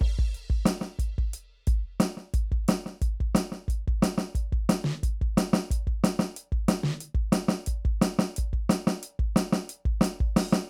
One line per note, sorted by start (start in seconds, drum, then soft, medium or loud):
0.01 kick medium
0.01 crash medium
0.19 kick medium
0.35 closed hi-hat medium
0.50 kick medium
0.66 closed hi-hat loud
0.66 snare loud
0.82 snare medium
0.99 closed hi-hat medium
0.99 kick medium
1.18 kick medium
1.34 closed hi-hat loud
1.67 closed hi-hat medium
1.67 kick medium
2.00 closed hi-hat loud
2.00 snare loud
2.18 snare soft
2.34 closed hi-hat medium
2.34 kick medium
2.52 kick medium
2.68 closed hi-hat loud
2.68 snare loud
2.86 snare medium
2.94 snare soft
3.02 closed hi-hat medium
3.02 kick medium
3.21 kick medium
3.35 closed hi-hat loud
3.35 snare loud
3.52 snare medium
3.68 closed hi-hat medium
3.68 kick medium
3.88 kick medium
4.03 closed hi-hat loud
4.03 snare loud
4.18 snare medium
4.35 closed hi-hat medium
4.35 kick medium
4.53 kick medium
4.70 closed hi-hat loud
4.70 snare loud
4.85 snare loud
5.03 closed hi-hat loud
5.03 kick medium
5.22 kick medium
5.38 closed hi-hat loud
5.38 snare loud
5.54 snare loud
5.71 closed hi-hat loud
5.71 kick medium
5.87 kick medium
6.04 closed hi-hat loud
6.04 snare loud
6.20 snare loud
6.37 closed hi-hat loud
6.52 kick medium
6.69 closed hi-hat loud
6.69 snare loud
6.84 snare loud
6.91 snare soft
7.01 closed hi-hat loud
7.15 kick medium
7.33 closed hi-hat loud
7.33 snare loud
7.49 snare loud
7.67 closed hi-hat loud
7.67 kick medium
7.85 kick medium
8.02 closed hi-hat loud
8.02 snare loud
8.19 snare loud
8.37 closed hi-hat loud
8.37 kick medium
8.53 kick medium
8.70 closed hi-hat loud
8.70 snare loud
8.88 snare loud
9.03 closed hi-hat loud
9.19 kick medium
9.36 closed hi-hat loud
9.36 snare loud
9.53 snare loud
9.70 closed hi-hat loud
9.86 kick medium
10.01 closed hi-hat loud
10.01 snare loud
10.21 kick medium
10.37 open hi-hat loud
10.37 snare loud
10.53 snare loud